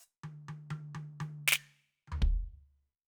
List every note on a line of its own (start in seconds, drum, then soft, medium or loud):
0.00 hi-hat pedal soft
0.23 high tom medium
0.48 high tom medium
0.70 high tom medium
0.95 high tom medium
1.20 closed hi-hat soft
1.20 high tom medium
1.48 snare loud
1.52 snare loud
2.07 high tom soft
2.12 floor tom medium
2.22 kick medium